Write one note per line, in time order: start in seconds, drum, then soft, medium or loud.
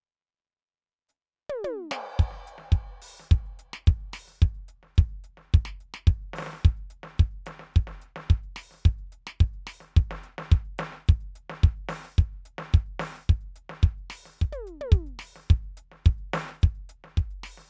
1.09 hi-hat pedal soft
1.49 high tom loud
1.64 hi-hat pedal medium
1.64 high tom loud
1.91 snare loud
1.91 crash loud
2.19 kick loud
2.19 closed hi-hat medium
2.31 snare soft
2.47 closed hi-hat medium
2.58 snare soft
2.72 kick loud
2.72 closed hi-hat soft
2.87 closed hi-hat soft
3.02 open hi-hat loud
3.20 snare soft
3.27 hi-hat pedal soft
3.31 kick loud
3.31 closed hi-hat soft
3.38 snare soft
3.46 closed hi-hat soft
3.59 closed hi-hat medium
3.73 snare medium
3.86 kick loud
3.86 closed hi-hat soft
4.00 closed hi-hat soft
4.13 open hi-hat medium
4.13 snare medium
4.28 snare soft
4.38 kick loud
4.38 closed hi-hat soft
4.38 hi-hat pedal soft
4.55 closed hi-hat soft
4.68 closed hi-hat medium
4.83 snare soft
4.96 kick loud
4.96 closed hi-hat soft
5.09 closed hi-hat soft
5.24 closed hi-hat medium
5.37 snare soft
5.53 kick loud
5.53 closed hi-hat soft
5.65 snare medium
5.65 closed hi-hat soft
5.80 closed hi-hat soft
5.94 snare medium
6.07 kick loud
6.07 closed hi-hat soft
6.22 closed hi-hat soft
6.33 open hi-hat medium
6.33 snare medium
6.39 snare medium
6.42 snare soft
6.46 snare medium
6.53 snare soft
6.61 snare soft
6.61 closed hi-hat soft
6.61 hi-hat pedal soft
6.65 kick loud
6.70 snare soft
6.77 closed hi-hat soft
6.90 closed hi-hat medium
7.03 snare medium
7.18 kick loud
7.18 closed hi-hat soft
7.31 closed hi-hat soft
7.46 closed hi-hat medium
7.46 snare medium
7.59 snare soft
7.74 kick loud
7.74 closed hi-hat soft
7.87 snare soft
7.87 closed hi-hat soft
8.02 closed hi-hat medium
8.16 snare medium
8.30 kick loud
8.30 closed hi-hat soft
8.43 closed hi-hat soft
8.56 open hi-hat medium
8.56 snare medium
8.71 snare soft
8.74 snare soft
8.82 closed hi-hat soft
8.82 kick loud
8.82 hi-hat pedal soft
8.98 closed hi-hat soft
9.07 kick soft
9.12 closed hi-hat medium
9.27 snare medium
9.40 kick loud
9.40 closed hi-hat soft
9.53 closed hi-hat soft
9.67 open hi-hat medium
9.67 snare medium
9.80 snare soft
9.92 hi-hat pedal soft
9.97 kick loud
9.97 closed hi-hat soft
10.11 snare medium
10.11 closed hi-hat soft
10.23 closed hi-hat medium
10.38 snare medium
10.51 kick loud
10.51 closed hi-hat soft
10.65 closed hi-hat soft
10.78 open hi-hat medium
10.78 snare loud
10.93 snare soft
11.06 kick loud
11.06 closed hi-hat soft
11.06 hi-hat pedal soft
11.11 snare soft
11.20 closed hi-hat soft
11.35 closed hi-hat medium
11.50 snare medium
11.63 kick loud
11.63 closed hi-hat soft
11.76 closed hi-hat soft
11.89 open hi-hat medium
11.89 snare medium
12.05 snare soft
12.14 hi-hat pedal soft
12.18 kick loud
12.18 snare soft
12.18 closed hi-hat soft
12.33 closed hi-hat soft
12.45 closed hi-hat medium
12.58 snare medium
12.73 kick loud
12.73 closed hi-hat soft
12.86 closed hi-hat soft
13.00 open hi-hat medium
13.00 snare loud
13.16 snare soft
13.24 hi-hat pedal soft
13.28 kick loud
13.28 snare soft
13.28 closed hi-hat soft
13.41 closed hi-hat soft
13.56 closed hi-hat medium
13.69 snare medium
13.82 kick loud
13.82 closed hi-hat soft
13.98 closed hi-hat soft
14.10 open hi-hat medium
14.10 snare medium
14.26 snare soft
14.38 kick medium
14.38 hi-hat pedal soft
14.38 open hi-hat soft
14.52 closed hi-hat soft
14.52 high tom medium
14.67 closed hi-hat medium
14.81 high tom loud
14.92 kick loud
14.92 closed hi-hat soft
15.06 closed hi-hat soft
15.19 open hi-hat medium
15.19 snare medium
15.36 snare soft
15.46 kick loud
15.46 closed hi-hat soft
15.46 hi-hat pedal soft
15.56 snare soft
15.63 closed hi-hat soft
15.77 closed hi-hat loud
15.92 snare soft
16.05 kick loud
16.05 closed hi-hat soft
16.18 closed hi-hat soft
16.33 open hi-hat medium
16.33 snare loud
16.48 snare soft
16.55 snare soft
16.59 snare soft
16.59 closed hi-hat soft
16.59 hi-hat pedal soft
16.63 kick loud
16.63 snare soft
16.75 closed hi-hat soft
16.89 closed hi-hat medium
17.04 snare soft
17.17 kick loud
17.17 closed hi-hat soft
17.31 closed hi-hat soft
17.43 open hi-hat medium
17.43 snare medium
17.58 snare soft